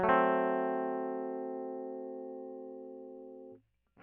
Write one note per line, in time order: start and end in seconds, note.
0.00 3.58 F#3
0.00 3.59 A3
0.09 3.61 C4